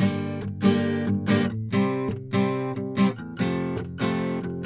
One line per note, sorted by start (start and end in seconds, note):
0.00 0.42 G2
0.00 0.42 D3
0.00 0.45 G3
0.00 0.45 A#3
0.00 0.46 D4
0.00 0.16 G4
0.42 0.62 G2
0.42 0.63 D3
0.63 1.07 G2
0.63 1.09 D3
0.63 1.10 G3
0.63 1.10 A#3
0.63 1.11 D4
0.67 1.05 G4
1.09 1.28 G2
1.09 1.29 D3
1.29 1.50 G2
1.29 1.44 D3
1.29 1.52 G3
1.29 1.53 A#3
1.29 1.50 D4
1.33 1.48 G4
1.45 1.70 A2
1.74 2.11 C3
1.74 2.12 G3
1.74 2.13 C4
2.11 2.33 C3
2.35 2.76 C3
2.35 2.75 G3
2.35 2.99 C4
2.75 2.98 C3
2.75 2.98 G3
2.99 3.11 C3
2.99 3.13 G3
2.99 3.17 C4
3.12 3.26 A2
3.20 3.38 E2
3.40 3.78 F2
3.40 3.79 C3
3.40 3.81 F3
3.40 3.82 A3
3.79 4.01 F2
3.79 4.01 C3
4.01 4.44 F2
4.01 4.43 C3
4.01 4.44 F3
4.01 4.43 A3
4.01 4.43 C4
4.05 4.43 F4
4.45 4.65 F2
4.45 4.65 C3